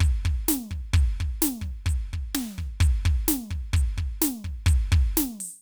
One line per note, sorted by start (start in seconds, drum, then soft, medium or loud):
0.01 closed hi-hat medium
0.01 kick loud
0.25 kick medium
0.49 closed hi-hat loud
0.49 snare loud
0.57 snare soft
0.71 kick medium
0.94 closed hi-hat medium
0.94 kick loud
1.21 kick medium
1.42 closed hi-hat loud
1.42 snare loud
1.62 kick medium
1.86 closed hi-hat medium
1.86 kick medium
2.14 kick medium
2.35 closed hi-hat loud
2.35 snare loud
2.58 kick medium
2.81 closed hi-hat loud
2.81 kick loud
3.06 kick loud
3.29 closed hi-hat loud
3.29 snare loud
3.37 snare soft
3.51 kick medium
3.74 closed hi-hat loud
3.74 kick loud
3.98 kick medium
4.22 closed hi-hat loud
4.22 snare loud
4.45 kick medium
4.67 closed hi-hat loud
4.67 kick loud
4.92 kick loud
5.18 snare loud
5.26 snare soft
5.41 open hi-hat loud